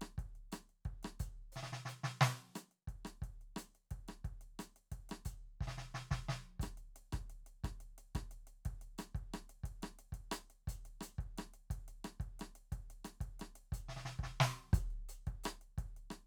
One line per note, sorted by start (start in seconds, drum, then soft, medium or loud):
0.01 cross-stick medium
0.01 closed hi-hat soft
0.18 kick medium
0.18 closed hi-hat soft
0.35 closed hi-hat soft
0.52 closed hi-hat medium
0.52 cross-stick medium
0.69 closed hi-hat soft
0.85 kick soft
0.85 closed hi-hat soft
1.03 cross-stick medium
1.03 closed hi-hat soft
1.19 closed hi-hat medium
1.19 kick medium
1.52 snare medium
1.52 hi-hat pedal soft
1.63 snare medium
1.72 snare medium
1.85 snare medium
1.85 hi-hat pedal medium
2.03 snare medium
2.21 snare loud
2.55 closed hi-hat medium
2.55 cross-stick medium
2.71 closed hi-hat soft
2.87 kick soft
2.87 closed hi-hat soft
3.05 cross-stick medium
3.05 closed hi-hat soft
3.22 kick soft
3.22 closed hi-hat soft
3.41 closed hi-hat soft
3.56 closed hi-hat medium
3.56 cross-stick medium
3.75 closed hi-hat soft
3.91 kick soft
3.91 closed hi-hat soft
4.08 cross-stick medium
4.08 closed hi-hat soft
4.24 kick soft
4.24 closed hi-hat soft
4.41 closed hi-hat soft
4.59 closed hi-hat medium
4.59 cross-stick medium
4.76 closed hi-hat soft
4.92 kick soft
4.92 closed hi-hat soft
5.09 cross-stick medium
5.09 closed hi-hat soft
5.25 closed hi-hat medium
5.25 kick soft
5.61 kick medium
5.61 snare soft
5.67 snare medium
5.77 snare soft
5.94 snare medium
6.11 kick medium
6.11 snare medium
6.28 snare medium
6.59 closed hi-hat medium
6.59 kick medium
6.59 cross-stick medium
6.77 closed hi-hat soft
6.96 closed hi-hat soft
7.12 kick medium
7.12 cross-stick medium
7.12 closed hi-hat soft
7.30 closed hi-hat soft
7.46 closed hi-hat soft
7.64 kick medium
7.64 cross-stick medium
7.64 closed hi-hat soft
7.80 closed hi-hat soft
7.98 closed hi-hat soft
8.15 kick medium
8.15 cross-stick medium
8.15 closed hi-hat soft
8.31 closed hi-hat soft
8.47 closed hi-hat soft
8.65 kick medium
8.65 closed hi-hat soft
8.81 closed hi-hat soft
8.98 closed hi-hat medium
8.98 cross-stick medium
9.15 kick medium
9.15 closed hi-hat soft
9.34 cross-stick medium
9.34 closed hi-hat soft
9.49 closed hi-hat soft
9.63 kick soft
9.63 closed hi-hat soft
9.82 cross-stick medium
9.82 closed hi-hat soft
9.99 closed hi-hat soft
10.12 kick soft
10.12 closed hi-hat soft
10.31 closed hi-hat medium
10.31 cross-stick medium
10.50 closed hi-hat soft
10.67 closed hi-hat medium
10.67 kick medium
10.85 closed hi-hat soft
11.01 closed hi-hat medium
11.01 cross-stick medium
11.18 kick medium
11.18 closed hi-hat soft
11.38 cross-stick medium
11.38 closed hi-hat soft
11.54 closed hi-hat soft
11.70 kick medium
11.70 closed hi-hat medium
11.88 closed hi-hat soft
12.04 cross-stick medium
12.04 closed hi-hat soft
12.20 kick medium
12.20 closed hi-hat soft
12.39 cross-stick medium
12.39 closed hi-hat soft
12.55 closed hi-hat soft
12.72 kick medium
12.72 closed hi-hat soft
12.90 closed hi-hat soft
13.04 cross-stick medium
13.04 closed hi-hat medium
13.20 kick medium
13.20 closed hi-hat soft
13.39 cross-stick medium
13.39 closed hi-hat soft
13.55 closed hi-hat soft
13.72 closed hi-hat medium
13.72 kick medium
13.88 snare soft
13.96 snare soft
14.05 snare medium
14.19 kick medium
14.23 snare soft
14.40 snare loud
14.56 snare soft
14.73 closed hi-hat medium
14.73 kick loud
14.90 closed hi-hat soft
15.09 closed hi-hat medium
15.27 kick medium
15.27 closed hi-hat soft
15.44 closed hi-hat medium
15.44 cross-stick medium
15.61 closed hi-hat soft
15.78 kick medium
15.78 closed hi-hat soft
15.96 closed hi-hat soft
16.10 cross-stick medium
16.10 closed hi-hat soft